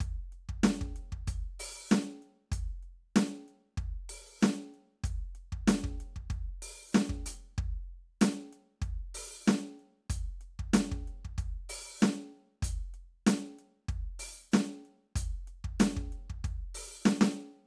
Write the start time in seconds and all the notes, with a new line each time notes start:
0.01 kick, closed hi-hat
0.33 closed hi-hat
0.49 kick
0.64 snare, closed hi-hat
0.82 kick
0.97 closed hi-hat
1.13 kick
1.28 closed hi-hat, kick
1.60 open hi-hat
1.91 snare, closed hi-hat, hi-hat pedal
2.23 closed hi-hat
2.52 kick, closed hi-hat
2.83 closed hi-hat
3.16 snare, closed hi-hat
3.49 closed hi-hat
3.78 kick, closed hi-hat
4.10 open hi-hat
4.42 snare, closed hi-hat, hi-hat pedal
4.75 closed hi-hat
5.04 kick, closed hi-hat
5.36 closed hi-hat
5.53 kick
5.68 closed hi-hat, snare
5.84 kick
6.01 closed hi-hat
6.17 kick
6.31 kick, closed hi-hat
6.63 open hi-hat
6.93 snare, closed hi-hat, hi-hat pedal
7.10 kick
7.27 closed hi-hat
7.59 kick
8.22 closed hi-hat, snare
8.53 closed hi-hat
8.82 kick, closed hi-hat
9.15 open hi-hat
9.47 closed hi-hat, snare, hi-hat pedal
9.80 closed hi-hat
10.10 closed hi-hat, kick
10.42 closed hi-hat
10.60 kick
10.74 closed hi-hat, snare
10.92 kick
11.08 closed hi-hat
11.25 kick
11.39 kick, closed hi-hat
11.70 open hi-hat
12.01 snare, closed hi-hat, hi-hat pedal
12.63 closed hi-hat, kick
12.95 closed hi-hat
13.27 closed hi-hat, snare
13.59 closed hi-hat
13.89 kick, closed hi-hat
14.20 open hi-hat
14.53 snare, closed hi-hat, hi-hat pedal
14.86 closed hi-hat
15.16 closed hi-hat, kick
15.48 closed hi-hat
15.65 kick
15.80 closed hi-hat, snare
15.97 kick
16.13 closed hi-hat
16.30 kick
16.45 kick, closed hi-hat
16.75 open hi-hat
17.06 snare, hi-hat pedal
17.22 snare